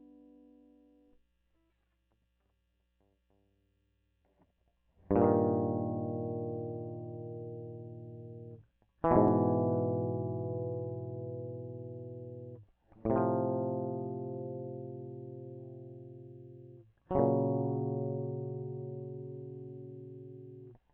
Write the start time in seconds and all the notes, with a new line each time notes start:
5.12 G2
5.17 A#2
5.22 D#3
9.04 E3
9.12 B2
9.17 G#2
12.98 A2
13.06 A2
13.11 C3
13.16 F3
17.11 F#3
17.16 A#2 C#3